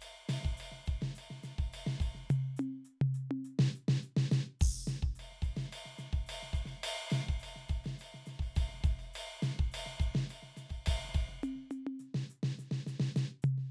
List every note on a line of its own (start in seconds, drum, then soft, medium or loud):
0.01 hi-hat pedal medium
0.01 ride bell medium
0.29 snare medium
0.29 hi-hat pedal medium
0.29 ride medium
0.43 kick soft
0.43 snare soft
0.57 hi-hat pedal medium
0.57 ride bell medium
0.72 snare soft
0.86 kick soft
0.86 hi-hat pedal medium
0.86 ride soft
1.01 snare medium
1.01 ride soft
1.15 hi-hat pedal medium
1.15 ride bell medium
1.30 snare soft
1.43 snare soft
1.43 hi-hat pedal medium
1.43 ride soft
1.58 kick soft
1.58 ride soft
1.73 hi-hat pedal medium
1.73 ride bell medium
1.87 snare medium
2.00 kick soft
2.00 hi-hat pedal medium
2.00 ride soft
2.15 snare soft
2.30 floor tom loud
2.30 hi-hat pedal medium
2.57 hi-hat pedal medium
2.57 high tom loud
2.61 closed hi-hat soft
2.85 hi-hat pedal medium
3.01 floor tom loud
3.14 hi-hat pedal medium
3.31 high tom loud
3.45 hi-hat pedal medium
3.59 snare loud
3.75 hi-hat pedal medium
3.88 snare loud
4.03 hi-hat pedal medium
4.17 snare medium
4.32 snare medium
4.32 hi-hat pedal medium
4.60 kick medium
4.60 hi-hat pedal soft
4.60 crash medium
4.87 snare medium
4.87 hi-hat pedal medium
5.02 kick soft
5.02 snare soft
5.15 hi-hat pedal medium
5.19 ride bell soft
5.32 snare soft
5.42 kick soft
5.42 hi-hat pedal medium
5.42 ride soft
5.56 snare medium
5.56 ride soft
5.72 hi-hat pedal medium
5.72 ride bell medium
5.86 snare soft
5.98 snare soft
5.98 hi-hat pedal medium
5.98 ride soft
6.13 kick soft
6.13 ride soft
6.27 hi-hat pedal medium
6.27 ride bell medium
6.43 snare soft
6.53 kick soft
6.53 hi-hat pedal medium
6.53 ride soft
6.66 snare soft
6.66 ride soft
6.83 hi-hat pedal medium
6.83 ride loud
7.10 snare medium
7.10 hi-hat pedal medium
7.10 ride medium
7.27 kick soft
7.27 snare soft
7.40 hi-hat pedal medium
7.40 ride bell medium
7.56 snare soft
7.69 kick soft
7.69 hi-hat pedal medium
7.69 ride soft
7.84 snare medium
7.84 ride soft
7.99 hi-hat pedal medium
7.99 ride bell medium
8.14 snare soft
8.26 snare soft
8.26 hi-hat pedal medium
8.26 ride soft
8.39 kick soft
8.39 ride soft
8.56 kick medium
8.56 hi-hat pedal medium
8.56 ride bell medium
8.69 snare soft
8.74 snare soft
8.77 snare soft
8.81 kick medium
8.81 snare soft
8.81 hi-hat pedal medium
8.86 ride soft
8.99 ride soft
9.14 hi-hat pedal medium
9.14 ride bell medium
9.42 snare medium
9.42 hi-hat pedal medium
9.42 ride soft
9.56 kick medium
9.56 snare soft
9.72 hi-hat pedal medium
9.72 ride loud
9.86 snare soft
10.00 kick medium
10.00 hi-hat pedal medium
10.00 ride soft
10.14 snare medium
10.14 ride soft
10.29 hi-hat pedal medium
10.29 ride bell medium
10.43 snare soft
10.57 snare soft
10.57 hi-hat pedal medium
10.57 ride soft
10.70 kick soft
10.70 ride soft
10.86 kick medium
10.86 hi-hat pedal medium
10.86 ride loud
10.99 snare soft
11.05 snare soft
11.09 snare soft
11.14 kick medium
11.14 hi-hat pedal medium
11.14 ride medium
11.29 snare soft
11.43 hi-hat pedal medium
11.43 high tom loud
11.55 snare soft
11.71 hi-hat pedal medium
11.71 high tom medium
11.87 high tom medium
11.99 snare soft
11.99 hi-hat pedal medium
12.15 snare medium
12.30 hi-hat pedal medium
12.43 snare medium
12.59 snare soft
12.59 hi-hat pedal medium
12.71 snare medium
12.87 snare medium
12.87 hi-hat pedal medium
13.00 snare medium
13.16 snare medium
13.16 hi-hat pedal medium
13.42 floor tom loud
13.42 hi-hat pedal medium
13.58 snare soft